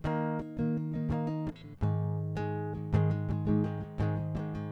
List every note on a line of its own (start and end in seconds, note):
0.05 0.40 D#3
0.05 0.40 A#3
0.41 0.58 D#3
0.41 0.58 A#3
0.60 0.97 D#3
0.60 0.78 A#3
0.78 0.93 A#3
0.95 1.11 D#3
0.95 1.12 A#3
0.95 1.12 D#4
1.11 1.47 D#3
1.11 1.28 A#3
1.11 1.27 D#4
1.28 1.52 A#3
1.28 1.56 D#4
1.48 1.60 A2
1.57 1.79 D3
1.83 2.40 G#2
1.83 2.38 D#3
1.83 2.37 G#3
2.38 2.78 G#2
2.38 2.77 D#3
2.38 2.74 G#3
2.74 2.96 D#3
2.74 2.95 G#3
2.78 2.93 G#2
2.94 3.16 G#2
2.94 3.13 D#3
2.94 3.12 G#3
3.12 3.30 D#3
3.12 3.31 G#3
3.16 3.29 G#2
3.30 3.50 G#2
3.30 3.48 D#3
3.30 3.48 G#3
3.48 3.84 G#2
3.48 3.65 D#3
3.48 3.65 G#3
3.65 3.83 D#3
3.65 3.80 G#3
3.81 3.99 G#2
3.81 4.00 D#3
3.81 4.01 G#3
3.99 4.21 G#2
3.99 4.19 D#3
3.99 4.15 G#3
4.17 4.38 D#3
4.17 4.35 G#3
4.21 4.35 G#2
4.36 4.57 G#2
4.36 4.56 D#3
4.36 4.71 G#3
4.56 4.71 G#2
4.56 4.71 D#3